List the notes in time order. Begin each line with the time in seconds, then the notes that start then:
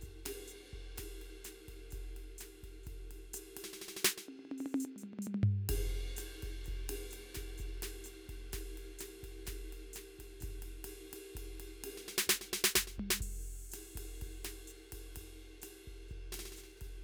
0.01 kick, hi-hat pedal, ride
0.08 kick
0.25 snare, ride
0.48 hi-hat pedal
0.73 kick
0.78 kick
0.96 kick, snare, hi-hat pedal, ride
1.04 kick
1.21 ride
1.44 snare, hi-hat pedal, ride
1.68 kick, ride
1.90 kick, hi-hat pedal, ride
1.98 kick
2.16 ride
2.38 snare, hi-hat pedal, ride
2.63 kick, ride
2.83 kick, hi-hat pedal, ride
2.92 kick
3.11 ride
3.33 hi-hat pedal, ride
3.56 ride
3.64 snare
3.73 snare
3.81 snare
3.88 snare
3.96 snare
4.04 snare
4.17 snare
4.28 high tom
4.39 high tom
4.45 high tom
4.51 high tom
4.58 hi-hat pedal, high tom
4.66 high tom
4.74 high tom
4.80 hi-hat pedal
4.85 high tom
4.96 hi-hat pedal, mid tom
5.03 mid tom
5.13 mid tom
5.19 hi-hat pedal, mid tom
5.27 mid tom
5.34 mid tom
5.43 floor tom
5.69 kick, ride
5.76 kick
6.16 snare, hi-hat pedal, ride
6.42 kick, ride
6.49 kick
6.64 kick, hi-hat pedal, ride
6.73 kick
6.88 snare, ride
7.11 hi-hat pedal, ride
7.19 snare
7.34 kick, snare, ride
7.42 kick
7.57 kick, hi-hat pedal, ride
7.65 kick, snare
7.82 snare, ride
8.04 hi-hat pedal, ride
8.29 kick, ride
8.52 kick, snare, hi-hat pedal, ride
8.58 kick
8.77 ride
8.86 snare
8.99 snare, hi-hat pedal, ride
9.23 kick, ride
9.45 kick, snare, hi-hat pedal, ride
9.53 kick
9.72 ride
9.82 snare
9.93 snare, hi-hat pedal, ride
10.19 kick, ride
10.40 kick, snare, hi-hat pedal, ride, floor tom
10.49 kick, snare
10.54 snare
10.62 ride
10.84 ride
11.13 ride
11.35 kick, ride
11.60 ride
11.84 ride
11.97 snare
12.08 snare
12.18 snare
12.27 kick, snare
12.41 snare
12.53 snare
12.64 snare
12.75 kick, snare
12.87 snare
12.98 kick, mid tom
13.03 kick
13.10 snare
13.20 kick, crash
13.71 snare, hi-hat pedal, ride
13.95 kick, ride
14.00 kick
14.21 kick, snare, ride
14.27 kick
14.44 snare, ride
14.67 hi-hat pedal
14.92 kick, ride
15.14 kick, snare, hi-hat pedal, ride
15.22 kick
15.62 snare, hi-hat pedal, ride
15.87 kick, ride
16.08 kick, hi-hat pedal
16.32 snare, ride
16.39 snare
16.45 snare
16.52 snare
16.56 snare, hi-hat pedal, ride
16.63 snare
16.69 snare
16.77 snare
16.81 kick, snare, ride
16.87 kick, snare
16.95 snare